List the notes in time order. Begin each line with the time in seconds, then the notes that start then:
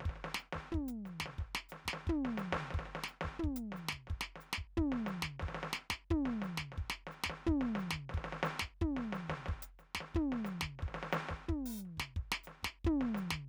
0.01 snare
0.06 kick, snare
0.16 snare
0.24 snare
0.35 snare
0.39 hi-hat pedal
0.53 kick, snare
0.71 kick, floor tom
0.88 closed hi-hat
1.06 snare, hi-hat pedal
1.20 kick, snare
1.26 snare
1.39 kick, snare
1.55 snare
1.69 snare, hi-hat pedal
1.86 kick, snare
1.93 snare
2.07 kick, floor tom
2.25 snare
2.38 snare, hi-hat pedal
2.52 kick, snare
2.71 kick, snare
2.79 snare
2.86 snare
2.95 snare
3.04 snare, hi-hat pedal
3.21 kick, snare
3.39 floor tom
3.44 kick
3.56 closed hi-hat
3.72 snare, hi-hat pedal
3.89 kick, snare
3.93 snare
4.07 kick, snare
4.21 snare
4.36 snare
4.41 hi-hat pedal
4.53 snare
4.58 kick
4.77 kick, floor tom
4.92 snare
5.07 snare, hi-hat pedal
5.22 kick, snare
5.40 kick, snare
5.49 snare
5.55 snare
5.63 snare
5.73 snare, hi-hat pedal
5.90 kick, snare
6.10 kick, floor tom
6.26 snare
6.42 snare, hi-hat pedal
6.58 kick, snare
6.72 snare
6.78 kick
6.90 snare
7.07 snare
7.11 hi-hat pedal
7.24 kick, snare
7.30 snare
7.46 kick, floor tom
7.61 snare
7.75 snare, hi-hat pedal
7.91 kick, snare
8.10 snare
8.14 kick, snare
8.24 snare
8.33 snare
8.43 snare, hi-hat pedal
8.60 kick, snare
8.81 kick, floor tom
8.97 snare
9.13 snare, hi-hat pedal
9.29 kick, snare
9.46 kick, snare
9.62 open hi-hat
9.79 snare, hi-hat pedal
9.95 kick, snare
10.01 snare
10.15 kick, floor tom
10.32 snare
10.45 snare, hi-hat pedal
10.61 kick, snare
10.79 kick, snare
10.88 snare
10.95 snare
11.03 snare
11.12 hi-hat pedal
11.29 kick, snare
11.48 kick, floor tom
11.66 open hi-hat
11.79 hi-hat pedal
11.85 snare
11.97 kick, snare
12.16 kick, snare
12.32 snare
12.44 snare, hi-hat pedal
12.63 kick, snare
12.85 kick, floor tom
13.01 snare
13.15 snare, hi-hat pedal
13.31 kick, snare